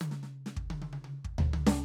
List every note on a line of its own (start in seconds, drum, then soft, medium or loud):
0.00 hi-hat pedal medium
0.00 high tom loud
0.11 snare soft
0.23 snare soft
0.46 snare medium
0.57 kick medium
0.70 high tom medium
0.82 high tom medium
0.93 high tom medium
1.04 high tom medium
1.25 kick medium
1.38 floor tom loud
1.53 high tom loud
1.67 snare loud